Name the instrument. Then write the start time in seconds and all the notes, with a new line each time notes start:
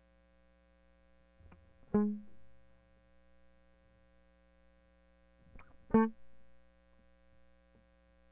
electric guitar
1.96 G#3
5.95 A3